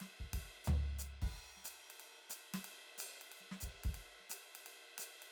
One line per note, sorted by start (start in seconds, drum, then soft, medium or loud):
0.01 snare soft
0.01 ride medium
0.21 kick soft
0.34 kick soft
0.34 ride loud
0.57 snare soft
0.65 floor tom loud
0.65 hi-hat pedal medium
0.89 snare soft
0.99 snare soft
0.99 hi-hat pedal medium
1.22 kick medium
1.22 crash soft
1.57 snare soft
1.65 hi-hat pedal medium
1.65 ride medium
1.91 ride medium
2.00 ride medium
2.30 hi-hat pedal medium
2.30 ride medium
2.54 snare medium
2.54 ride loud
2.65 ride medium
2.99 hi-hat pedal medium
2.99 ride loud
3.22 ride medium
3.32 ride medium
3.37 snare soft
3.37 hi-hat pedal soft
3.52 snare soft
3.61 kick soft
3.61 hi-hat pedal medium
3.61 ride soft
3.84 kick medium
3.84 ride medium
3.95 ride medium
4.20 snare soft
4.30 hi-hat pedal medium
4.30 ride medium
4.56 ride medium
4.67 ride medium
4.99 hi-hat pedal medium
4.99 ride loud
5.23 ride medium